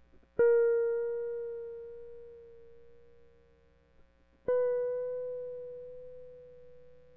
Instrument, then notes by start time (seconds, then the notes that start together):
electric guitar
0.39 A#4
4.49 B4